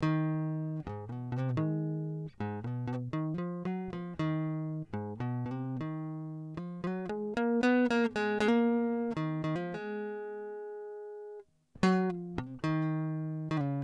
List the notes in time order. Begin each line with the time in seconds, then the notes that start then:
0.04 D#3
0.88 G#2
1.11 B2
1.33 C3
1.58 D#3 G#3
2.42 G#2
2.66 B2
2.89 B2
3.14 D#3
3.36 F3
3.67 F#3
3.95 F3
4.21 D#3
4.95 G#2
5.22 B2
5.53 C3
5.82 D#3
6.59 F3
6.85 F#3
7.11 G#3
7.38 A#3
7.64 B3
7.92 A#3
8.17 G#3
8.42 G#3
8.51 A#3
9.18 D#3
9.45 D#3
9.57 F3
9.76 G#3
11.84 F#3
12.11 F3
12.39 C3
12.65 D#3
13.52 D#3
13.63 C#3